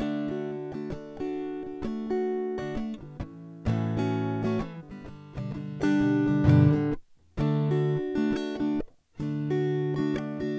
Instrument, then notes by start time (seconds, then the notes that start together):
acoustic guitar
0.00 D3 A3 D4 F#4
0.24 D4
0.31 F#4
0.74 A3 D4 F#4
0.92 A3 D4 F#4
1.23 D4 F#4
1.65 D4
1.85 A3 D4
2.12 F#4
2.60 A3 D4 F#4
2.71 F#4
2.77 A3 D4
2.96 G3
3.01 B3
3.21 A2 E3 C#4
3.32 E3
3.67 A2 F3 A3 C#4 F#4
3.99 A3 C#4 F#4
4.45 A3 C#4 F#4
4.61 E3 A3 C#4
4.77 B3
4.83 D3
4.93 G3 B3
5.07 D3 G3
5.38 B2 D3 G3
5.54 B2 D3 G3
5.83 G3 D4 G4
6.03 B2 D3
6.28 D3 G3
6.32 B2
6.46 G2 B2 D3 G3
6.51 D4 G4
6.70 A2
6.75 D3 G3
7.39 D3 A3 D4 F#4
7.65 A3
7.73 D4 F#4
8.17 A3 D4
8.35 A3 D4
8.57 F#4
8.62 A3 D4
9.22 D3 A3 D4
9.53 A3 D4 F#4
9.92 D3
9.96 F#4
10.01 A3 D4
10.17 A3 D4 F#4
10.37 D3
10.42 A3 D4 F#4